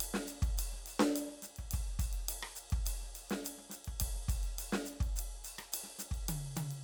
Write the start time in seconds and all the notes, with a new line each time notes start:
0.01 hi-hat pedal, ride
0.14 snare
0.28 hi-hat pedal, ride
0.42 kick, ride
0.58 hi-hat pedal, ride
0.73 snare
0.86 hi-hat pedal, ride
1.00 snare, ride
1.16 hi-hat pedal, ride
1.28 snare
1.42 snare, hi-hat pedal, ride
1.57 kick, ride
1.71 kick, hi-hat pedal, ride
1.99 kick, hi-hat pedal, ride
2.13 ride
2.29 hi-hat pedal, ride
2.43 cross-stick
2.56 hi-hat pedal, ride
2.71 kick, ride
2.86 hi-hat pedal, ride
3.02 snare
3.15 hi-hat pedal, ride
3.30 snare, ride
3.45 hi-hat pedal, ride
3.58 snare
3.70 snare, hi-hat pedal, ride
3.85 kick, ride
4.00 kick, hi-hat pedal, ride
4.15 snare
4.29 kick, hi-hat pedal, ride
4.44 ride
4.59 hi-hat pedal, ride
4.73 snare
4.86 hi-hat pedal, ride
5.01 kick, ride
5.16 hi-hat pedal, ride
5.45 hi-hat pedal, ride
5.59 cross-stick, ride
5.73 hi-hat pedal, ride
5.84 snare
5.99 snare, hi-hat pedal, ride
6.12 kick, ride
6.29 closed hi-hat, hi-hat pedal, high tom, ride
6.56 closed hi-hat, hi-hat pedal, high tom, ride
6.71 ride